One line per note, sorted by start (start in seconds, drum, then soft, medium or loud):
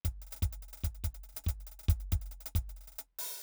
0.04 kick medium
0.04 closed hi-hat loud
0.22 closed hi-hat medium
0.27 closed hi-hat soft
0.31 closed hi-hat soft
0.31 closed hi-hat loud
0.36 closed hi-hat medium
0.42 closed hi-hat loud
0.42 kick medium
0.53 closed hi-hat medium
0.62 closed hi-hat medium
0.68 closed hi-hat soft
0.73 closed hi-hat medium
0.77 closed hi-hat medium
0.80 kick medium
0.80 closed hi-hat soft
0.84 closed hi-hat loud
0.95 closed hi-hat soft
1.04 closed hi-hat loud
1.04 kick soft
1.14 closed hi-hat medium
1.23 closed hi-hat medium
1.29 closed hi-hat soft
1.32 kick soft
1.32 closed hi-hat soft
1.35 closed hi-hat soft
1.36 closed hi-hat loud
1.44 kick medium
1.44 closed hi-hat medium
1.48 closed hi-hat loud
1.60 closed hi-hat soft
1.67 closed hi-hat medium
1.71 closed hi-hat medium
1.79 closed hi-hat medium
1.83 closed hi-hat medium
1.88 closed hi-hat loud
1.88 kick medium
2.00 closed hi-hat soft
2.12 closed hi-hat loud
2.12 kick medium
2.21 closed hi-hat medium
2.26 closed hi-hat soft
2.31 closed hi-hat medium
2.40 closed hi-hat medium
2.46 closed hi-hat loud
2.55 closed hi-hat loud
2.55 kick medium
2.69 closed hi-hat medium
2.76 closed hi-hat soft
2.81 closed hi-hat soft
2.83 closed hi-hat soft
2.87 closed hi-hat medium
2.92 closed hi-hat soft
2.95 closed hi-hat soft
2.98 closed hi-hat loud
3.19 open hi-hat loud